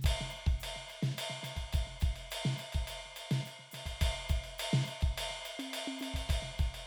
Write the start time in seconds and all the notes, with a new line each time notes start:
0.01 kick, snare, hi-hat pedal
0.06 ride
0.21 snare
0.30 hi-hat pedal
0.37 ride
0.47 kick, ride
0.60 hi-hat pedal, ride
0.76 snare
0.89 hi-hat pedal, ride
1.03 snare, ride
1.18 hi-hat pedal, ride
1.30 snare
1.44 snare, hi-hat pedal, ride
1.57 kick, ride
1.73 kick, hi-hat pedal, ride
1.87 snare
2.00 kick, hi-hat pedal, ride
2.16 ride
2.31 hi-hat pedal, ride
2.46 snare
2.58 hi-hat pedal, ride
2.73 kick, ride
2.88 hi-hat pedal, ride
3.06 snare
3.16 hi-hat pedal, ride
3.31 snare, ride
3.46 hi-hat pedal, ride bell
3.60 snare
3.72 snare, hi-hat pedal, ride
3.86 kick, ride
4.01 kick, hi-hat pedal, ride
4.29 kick, hi-hat pedal, ride
4.44 ride
4.59 hi-hat pedal, ride
4.74 snare
4.85 hi-hat pedal, ride
5.01 kick, ride
5.18 hi-hat pedal, ride
5.31 snare
5.45 hi-hat pedal, ride
5.60 high tom, ride
5.74 hi-hat pedal, ride
5.88 high tom
5.99 hi-hat pedal, high tom, ride
6.14 kick, ride
6.29 kick, hi-hat pedal, ride
6.43 snare
6.59 kick, hi-hat pedal, ride
6.75 ride